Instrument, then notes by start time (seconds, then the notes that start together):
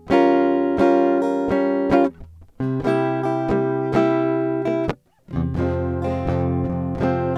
acoustic guitar
0.10 G3 C#4
0.14 F4 A#4
0.79 G3 C#4 F4
0.84 A#4
1.22 F4 A#4
1.51 G3 C#4 F4
1.91 G3 C#4 F4
1.96 A#4
2.61 C3 G3
2.81 C3
2.86 G3 A#3 E4 G4
3.25 E4 G4
3.50 C3 G3 A#3
3.94 G3 A#3 E4
3.99 G4
4.67 A#3 E4
5.35 E2 C3
5.56 F2 C3
5.61 F3 G#3 C4
5.66 F4
6.04 G#3 C4 F4
6.29 F2 C3
6.71 F2 C3
6.96 F2
7.01 C3 F3 G#3
7.05 C4 F4